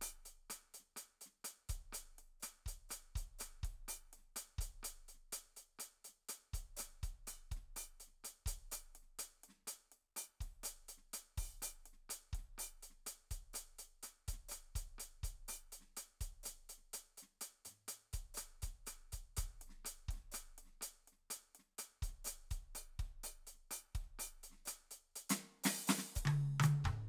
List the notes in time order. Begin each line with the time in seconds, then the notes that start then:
0.02 open hi-hat, cross-stick
0.25 closed hi-hat
0.50 closed hi-hat, cross-stick, snare
0.74 closed hi-hat
0.80 snare
0.96 closed hi-hat, cross-stick
1.21 closed hi-hat
1.26 snare
1.44 closed hi-hat, cross-stick
1.69 closed hi-hat, kick
1.93 closed hi-hat, cross-stick, snare, hi-hat pedal
2.18 closed hi-hat
2.40 closed hi-hat, cross-stick, hi-hat pedal
2.66 closed hi-hat, kick
2.89 closed hi-hat, cross-stick, hi-hat pedal
3.16 closed hi-hat, kick
3.20 snare
3.39 closed hi-hat, cross-stick, hi-hat pedal
3.63 kick, closed hi-hat
3.88 open hi-hat, cross-stick
4.13 snare, closed hi-hat
4.18 snare
4.36 closed hi-hat, cross-stick, snare
4.58 closed hi-hat, kick
4.83 closed hi-hat, cross-stick
5.08 closed hi-hat
5.14 snare
5.32 closed hi-hat, cross-stick
5.57 closed hi-hat
5.79 closed hi-hat, cross-stick
6.05 closed hi-hat, snare
6.29 closed hi-hat, cross-stick
6.54 closed hi-hat, kick, snare
6.77 closed hi-hat, cross-stick, snare, hi-hat pedal
7.03 closed hi-hat, kick
7.27 open hi-hat, cross-stick
7.52 kick, closed hi-hat
7.56 snare
7.76 open hi-hat, cross-stick
8.00 closed hi-hat
8.07 snare
8.24 closed hi-hat, cross-stick, snare
8.46 open hi-hat, kick
8.72 open hi-hat, cross-stick, hi-hat pedal
8.95 closed hi-hat
9.02 snare
9.18 closed hi-hat, cross-stick, snare
9.44 snare, closed hi-hat
9.49 snare
9.67 closed hi-hat, cross-stick
9.92 closed hi-hat
10.16 open hi-hat, cross-stick, snare
10.41 kick, snare, open hi-hat
10.63 closed hi-hat, cross-stick, hi-hat pedal
10.89 closed hi-hat
10.97 snare
11.13 closed hi-hat, cross-stick
11.38 open hi-hat, kick
11.62 open hi-hat, cross-stick, snare, hi-hat pedal
11.86 closed hi-hat
11.93 snare
12.09 closed hi-hat, cross-stick
12.33 kick, closed hi-hat
12.38 snare
12.58 open hi-hat, cross-stick
12.83 closed hi-hat
12.90 snare
13.06 closed hi-hat, cross-stick
13.31 closed hi-hat, kick
13.53 closed hi-hat, cross-stick, hi-hat pedal
13.79 closed hi-hat
14.03 closed hi-hat, cross-stick
14.28 closed hi-hat, kick
14.33 snare
14.49 closed hi-hat, cross-stick, hi-hat pedal
14.75 closed hi-hat, kick
14.98 closed hi-hat, cross-stick
15.23 closed hi-hat, kick
15.48 open hi-hat, cross-stick, snare
15.72 closed hi-hat
15.79 snare
15.81 snare
15.97 closed hi-hat, cross-stick
16.21 closed hi-hat, kick
16.43 closed hi-hat, snare, hi-hat pedal
16.69 closed hi-hat
16.78 snare
16.93 closed hi-hat, cross-stick
17.17 closed hi-hat
17.22 snare
17.41 closed hi-hat, cross-stick
17.65 closed hi-hat, snare, mid tom
17.70 snare
17.88 closed hi-hat, cross-stick
18.13 closed hi-hat, kick
18.34 closed hi-hat, cross-stick, snare, hi-hat pedal
18.62 closed hi-hat, kick
18.67 snare
18.86 closed hi-hat, cross-stick, hi-hat pedal
19.12 closed hi-hat, kick
19.37 open hi-hat, kick, cross-stick
19.44 kick
19.61 closed hi-hat
19.67 snare
19.69 snare
19.84 closed hi-hat, cross-stick, snare
20.08 kick, closed hi-hat
20.13 snare
20.16 snare
20.32 closed hi-hat, cross-stick, snare, hi-hat pedal
20.58 closed hi-hat
20.63 snare
20.66 snare
20.81 closed hi-hat, cross-stick
21.08 closed hi-hat
21.12 snare
21.30 closed hi-hat, cross-stick
21.55 closed hi-hat
21.59 snare
21.78 closed hi-hat, cross-stick
22.02 open hi-hat, kick
22.08 snare
22.25 closed hi-hat, cross-stick, hi-hat pedal
22.51 closed hi-hat, kick
22.75 open hi-hat, cross-stick, hi-hat pedal
22.99 kick, snare, closed hi-hat
23.04 snare
23.24 open hi-hat, cross-stick, hi-hat pedal
23.47 closed hi-hat
23.54 snare
23.71 open hi-hat, cross-stick, hi-hat pedal
23.95 kick, closed hi-hat
24.03 snare
24.19 open hi-hat, cross-stick, snare, hi-hat pedal
24.43 closed hi-hat
24.49 snare
24.52 snare
24.65 closed hi-hat, cross-stick, hi-hat pedal
24.91 closed hi-hat
25.16 closed hi-hat
25.30 closed hi-hat, snare
25.64 open hi-hat, snare
25.87 open hi-hat, snare
25.98 snare
26.15 kick, hi-hat pedal, crash
26.25 high tom
26.27 high tom
26.31 high tom
26.60 hi-hat pedal, high tom
26.64 high tom
26.84 kick, mid tom